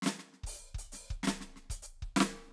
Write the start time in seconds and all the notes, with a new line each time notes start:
0.02 snare, hi-hat pedal
0.06 snare
0.18 snare
0.33 snare
0.43 open hi-hat, kick
0.55 hi-hat pedal
0.74 open hi-hat, kick
0.92 snare, hi-hat pedal
1.10 kick
1.23 snare
1.27 snare
1.41 snare
1.56 snare
1.70 closed hi-hat, kick
1.82 hi-hat pedal
2.02 kick
2.16 snare
2.20 snare